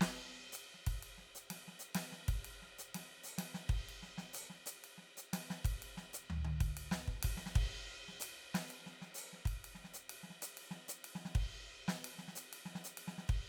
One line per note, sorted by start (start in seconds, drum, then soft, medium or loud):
0.01 snare medium
0.01 ride medium
0.52 hi-hat pedal loud
0.52 ride medium
0.74 snare soft
0.87 kick soft
0.87 ride medium
0.96 hi-hat pedal soft
1.03 ride medium
1.18 snare soft
1.35 hi-hat pedal medium
1.50 snare soft
1.50 ride medium
1.67 snare soft
1.79 hi-hat pedal medium
1.95 snare medium
1.95 ride loud
2.02 hi-hat pedal soft
2.12 snare soft
2.28 kick soft
2.28 ride medium
2.45 ride medium
2.62 snare soft
2.79 hi-hat pedal medium
2.94 snare soft
2.94 ride medium
3.23 hi-hat pedal medium
3.38 snare soft
3.38 ride loud
3.54 snare soft
3.69 kick soft
3.69 ride medium
3.89 ride medium
4.02 snare soft
4.18 snare soft
4.33 hi-hat pedal loud
4.33 ride medium
4.50 snare soft
4.66 hi-hat pedal loud
4.66 ride medium
4.84 ride medium
4.98 snare soft
5.17 hi-hat pedal medium
5.33 snare soft
5.33 ride loud
5.50 snare soft
5.65 kick soft
5.65 ride medium
5.82 ride medium
5.97 snare soft
6.13 hi-hat pedal loud
6.30 floor tom medium
6.45 high tom medium
6.60 kick soft
6.60 ride medium
6.77 ride medium
6.91 snare medium
7.08 kick soft
7.23 kick soft
7.23 ride loud
7.37 snare soft
7.46 snare soft
7.55 kick medium
7.55 ride medium
8.08 snare soft
8.20 hi-hat pedal loud
8.20 ride loud
8.54 snare medium
8.54 ride medium
8.68 hi-hat pedal soft
8.68 ride medium
8.86 snare soft
9.02 snare soft
9.14 hi-hat pedal medium
9.18 ride medium
9.33 snare soft
9.45 kick soft
9.45 ride medium
9.64 ride medium
9.75 snare soft
9.84 snare soft
9.94 hi-hat pedal medium
10.10 ride medium
10.23 snare soft
10.30 snare soft
10.42 hi-hat pedal loud
10.42 ride medium
10.57 ride medium
10.62 hi-hat pedal soft
10.71 snare soft
10.88 hi-hat pedal loud
11.04 ride medium
11.09 hi-hat pedal soft
11.15 snare soft
11.25 snare soft
11.35 kick medium
11.35 ride medium
11.52 ride soft
11.88 snare medium
12.04 ride medium
12.18 snare soft
12.28 snare soft
12.35 hi-hat pedal loud
12.35 ride medium
12.53 ride medium
12.65 snare soft
12.75 snare soft
12.84 hi-hat pedal loud
12.97 ride medium
13.07 snare soft
13.18 snare soft
13.28 kick medium
13.28 ride medium
13.43 ride soft